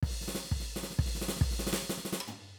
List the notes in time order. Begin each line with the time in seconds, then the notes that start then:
0.03 kick, crash
0.11 snare
0.21 snare
0.28 snare
0.35 snare
0.44 snare
0.50 kick, crash
0.60 snare
0.76 snare
0.83 snare
0.91 snare
0.98 kick, hi-hat pedal, crash
1.06 snare
1.15 snare
1.21 snare
1.28 snare
1.36 snare
1.41 kick, crash
1.51 snare
1.59 snare
1.67 snare
1.73 snare
1.80 snare, hi-hat pedal
1.90 snare
1.97 snare
2.05 snare
2.12 snare
2.20 floor tom
2.28 floor tom